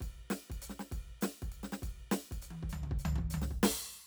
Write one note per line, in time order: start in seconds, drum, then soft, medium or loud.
0.01 kick medium
0.01 ride medium
0.31 snare medium
0.31 ride medium
0.50 kick medium
0.50 ride medium
0.62 hi-hat pedal medium
0.62 ride soft
0.70 snare soft
0.80 snare medium
0.92 kick medium
0.92 ride medium
1.22 snare loud
1.22 hi-hat pedal medium
1.22 ride soft
1.42 kick medium
1.42 ride soft
1.52 ride soft
1.64 snare medium
1.73 snare medium
1.82 kick medium
1.82 hi-hat pedal soft
1.82 ride medium
2.12 snare loud
2.12 hi-hat pedal medium
2.12 ride medium
2.31 kick medium
2.31 ride medium
2.42 hi-hat pedal medium
2.42 ride soft
2.51 high tom medium
2.63 kick medium
2.70 floor tom medium
2.70 hi-hat pedal soft
2.84 mid tom medium
2.91 kick medium
2.99 hi-hat pedal soft
3.06 floor tom loud
3.16 kick medium
3.16 high tom medium
3.31 floor tom medium
3.31 hi-hat pedal medium
3.42 snare medium
3.51 kick medium
3.63 snare loud
3.63 crash loud